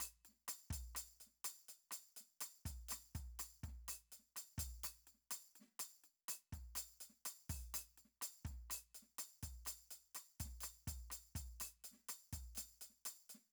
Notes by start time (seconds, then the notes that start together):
0.01 cross-stick, percussion
0.26 snare, percussion
0.30 snare
0.49 cross-stick, snare, percussion
0.71 kick, percussion
0.96 cross-stick, percussion
1.21 percussion
1.27 snare
1.45 cross-stick, percussion
1.69 percussion
1.92 cross-stick, percussion
2.17 snare, percussion
2.42 cross-stick, percussion
2.66 kick, snare, percussion
2.90 percussion
2.92 cross-stick, snare, percussion
3.16 kick, percussion
3.40 cross-stick, percussion
3.64 kick, percussion
3.69 snare
3.89 cross-stick, percussion
4.13 percussion
4.20 snare
4.37 cross-stick, snare, percussion
4.59 kick, percussion
4.84 cross-stick, percussion
5.08 percussion
5.15 snare
5.31 cross-stick, snare, percussion
5.56 snare, percussion
5.62 snare
5.80 cross-stick, percussion
6.05 percussion
6.29 cross-stick, snare, percussion
6.54 kick, snare, percussion
6.76 cross-stick, percussion
6.78 percussion
7.01 percussion
7.10 snare
7.26 cross-stick, percussion
7.51 kick, percussion
7.74 cross-stick, snare, percussion
7.99 percussion
8.06 snare
8.22 cross-stick, percussion
8.46 kick, percussion
8.51 snare
8.71 cross-stick, percussion
8.96 percussion
9.03 snare
9.19 cross-stick, percussion
9.44 kick, percussion
9.66 cross-stick, percussion
9.68 percussion
9.92 percussion
10.16 cross-stick, percussion
10.41 kick, percussion
10.46 snare
10.62 percussion
10.64 cross-stick, percussion
10.88 kick, percussion
11.11 cross-stick, percussion
11.36 kick, percussion
11.61 cross-stick, snare, percussion
11.85 percussion
11.92 snare
11.94 snare
12.10 cross-stick, percussion
12.34 kick, percussion
12.56 snare, percussion
12.58 percussion
12.82 percussion
12.91 snare
13.06 cross-stick, percussion
13.30 percussion
13.35 snare